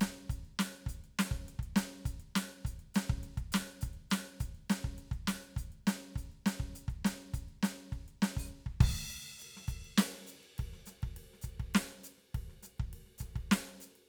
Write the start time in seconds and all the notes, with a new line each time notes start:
0.01 closed hi-hat, snare
0.30 closed hi-hat, kick
0.45 closed hi-hat
0.59 closed hi-hat, snare
0.87 closed hi-hat, kick
1.04 closed hi-hat
1.19 closed hi-hat, snare
1.27 snare
1.31 kick
1.45 snare, closed hi-hat
1.59 kick, closed hi-hat
1.76 closed hi-hat, snare
2.06 closed hi-hat, kick
2.20 closed hi-hat
2.36 closed hi-hat, snare
2.65 closed hi-hat, kick
2.80 closed hi-hat
2.95 closed hi-hat, snare
3.10 kick
3.24 closed hi-hat
3.38 kick, closed hi-hat
3.53 closed hi-hat, snare
3.81 closed hi-hat, kick
3.94 closed hi-hat
4.11 closed hi-hat, snare
4.41 closed hi-hat, kick
4.45 snare
4.55 closed hi-hat
4.70 closed hi-hat, snare
4.85 kick
4.99 closed hi-hat
5.12 kick, closed hi-hat
5.28 closed hi-hat, snare
5.57 closed hi-hat, kick
5.72 closed hi-hat
5.87 closed hi-hat, snare
6.01 snare
6.16 closed hi-hat, kick, snare
6.32 closed hi-hat
6.46 closed hi-hat, snare
6.60 kick
6.76 closed hi-hat
6.88 kick, closed hi-hat
7.05 closed hi-hat, snare
7.18 snare
7.34 closed hi-hat, kick
7.49 closed hi-hat
7.63 closed hi-hat, snare
7.93 kick, closed hi-hat
8.08 closed hi-hat
8.23 snare
8.36 open hi-hat, kick, snare
8.45 hi-hat pedal
8.67 kick
8.81 kick, crash
9.10 hi-hat pedal
9.39 hi-hat pedal, ride
9.57 snare
9.68 kick, hi-hat pedal, ride
9.85 ride
9.98 snare, ride
10.27 hi-hat pedal, ride
10.40 snare, ride
10.59 kick, ride
10.74 snare
10.86 snare, hi-hat pedal, ride
11.03 kick, ride
11.17 ride
11.34 snare
11.42 kick, hi-hat pedal, ride
11.60 kick, ride
11.75 snare, ride
12.04 hi-hat pedal, ride
12.17 snare, ride
12.35 kick, ride
12.50 snare
12.63 snare, hi-hat pedal, ride
12.79 kick, ride
12.94 ride
13.06 snare
13.19 kick, snare, hi-hat pedal, ride
13.36 kick, ride
13.52 snare, ride
13.69 snare
13.81 hi-hat pedal, ride
13.86 snare
13.96 ride